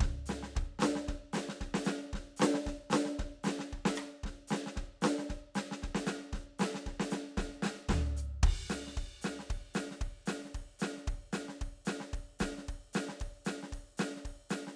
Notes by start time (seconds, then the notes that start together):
0.01 kick, snare
0.27 snare, hi-hat pedal
0.43 snare
0.56 kick, snare
0.80 snare, hi-hat pedal
0.83 snare
0.96 snare
1.08 kick, snare
1.34 snare, hi-hat pedal
1.36 snare
1.49 snare
1.61 kick, snare
1.75 snare
1.85 snare, hi-hat pedal
2.13 kick, snare
2.37 snare, hi-hat pedal
2.42 snare
2.55 snare
2.67 kick, snare
2.91 snare, hi-hat pedal
2.94 snare
3.06 snare
3.19 kick, snare
3.44 snare, hi-hat pedal
3.47 snare
3.60 snare
3.73 kick, snare
3.86 snare
3.96 cross-stick, hi-hat pedal
4.24 kick, snare
4.48 snare, hi-hat pedal
4.53 snare
4.67 snare
4.77 kick, snare
5.02 snare, hi-hat pedal
5.04 snare
5.19 snare
5.30 kick, snare
5.55 snare, hi-hat pedal
5.58 snare
5.72 snare
5.83 kick, snare
5.95 snare
6.07 snare, hi-hat pedal
6.33 kick, snare
6.59 snare, hi-hat pedal
6.62 snare
6.75 snare
6.87 kick, snare
7.00 snare
7.11 snare, hi-hat pedal
7.38 kick, snare
7.63 snare, hi-hat pedal
7.66 snare
7.89 kick, snare, floor tom
8.17 hi-hat pedal
8.44 kick, crash
8.70 snare, hi-hat pedal, ride
8.88 snare
8.97 kick, ride
9.22 snare, hi-hat pedal, ride
9.40 snare
9.51 kick, ride
9.75 snare, hi-hat pedal, ride
9.92 snare
10.02 kick, ride
10.27 snare, hi-hat pedal, ride
10.45 snare
10.55 kick, ride
10.80 snare, hi-hat pedal, ride
10.98 snare
11.08 kick, ride
11.33 snare, hi-hat pedal, ride
11.49 snare
11.62 kick, ride
11.86 snare, hi-hat pedal, ride
12.01 snare
12.14 kick, ride
12.40 kick, snare, hi-hat pedal, ride
12.58 snare
12.69 kick, ride
12.94 snare, hi-hat pedal, ride
13.09 snare
13.21 kick, ride
13.46 snare, hi-hat pedal, ride
13.63 snare
13.73 kick, ride
13.98 snare, hi-hat pedal, ride
14.17 snare
14.26 kick, ride
14.50 snare, hi-hat pedal, ride
14.68 snare